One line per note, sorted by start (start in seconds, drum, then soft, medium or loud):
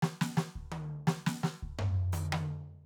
0.02 snare loud
0.21 snare medium
0.37 snare loud
0.56 kick soft
0.72 high tom loud
1.07 snare loud
1.26 snare medium
1.43 snare medium
1.63 kick soft
1.79 floor tom loud
2.12 hi-hat pedal medium
2.12 high tom loud
2.32 high tom loud